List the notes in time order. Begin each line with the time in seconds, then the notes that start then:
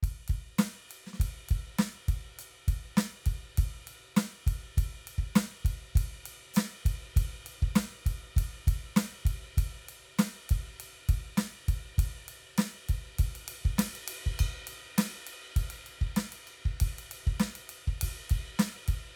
0.00 kick, ride
0.28 kick, ride
0.59 snare, hi-hat pedal, ride
0.89 hi-hat pedal, ride
1.07 snare
1.13 snare
1.20 kick, snare, ride
1.49 kick, ride
1.79 snare, ride
2.08 kick, ride
2.39 hi-hat pedal, ride
2.68 kick, ride
2.97 snare, hi-hat pedal, ride
3.26 kick, ride
3.58 kick, ride
3.87 ride
4.17 snare, ride
4.47 kick, ride
4.78 kick, ride
5.07 ride
5.18 kick
5.36 snare, ride
5.65 kick, ride
5.96 kick, ride
6.26 ride
6.54 snare, hi-hat pedal, ride
6.86 kick, ride
7.17 kick, ride
7.46 ride
7.62 kick
7.76 snare, ride
8.06 kick, ride
8.37 kick, ride
8.67 kick, ride
8.96 snare, ride
9.25 kick, ride
9.58 kick, ride
9.89 ride
10.19 snare, ride
10.50 kick, ride
10.80 ride
11.09 kick, ride
11.38 snare, ride
11.68 kick, ride
11.98 kick, ride
12.28 ride
12.58 snare, ride
12.89 kick, ride
13.19 kick, ride
13.36 ride
13.48 ride
13.65 kick
13.79 snare, ride
13.96 ride
14.08 ride
14.26 kick
14.39 kick, ride bell
14.67 ride
14.98 snare, ride
15.27 ride
15.56 kick, ride
15.70 ride
15.87 ride
16.01 kick
16.17 snare, ride
16.32 ride
16.47 ride bell
16.66 kick
16.80 kick, ride
16.99 ride
17.12 ride
17.27 kick
17.40 snare, ride bell
17.56 ride
17.70 ride
17.88 kick
18.02 kick, ride
18.30 kick, ride
18.59 snare, ride
18.88 kick, ride